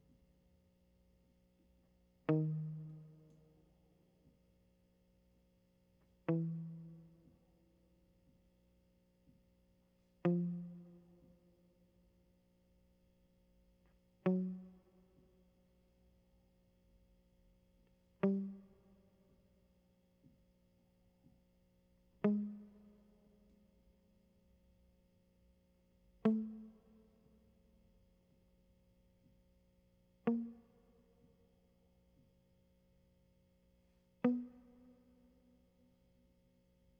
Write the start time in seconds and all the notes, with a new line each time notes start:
2.30 D#3
6.29 E3
10.26 F3
14.27 F#3
18.24 G3
22.25 G#3
26.26 A3
30.28 A#3
34.25 B3